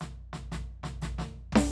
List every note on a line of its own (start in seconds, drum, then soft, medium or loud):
0.00 snare medium
0.00 floor tom medium
0.00 hi-hat pedal medium
0.33 snare medium
0.33 floor tom medium
0.52 snare medium
0.52 floor tom medium
0.52 hi-hat pedal medium
0.83 snare medium
0.83 floor tom medium
1.02 snare medium
1.02 floor tom medium
1.02 hi-hat pedal medium
1.18 snare medium
1.18 floor tom medium
1.52 snare loud
1.52 floor tom loud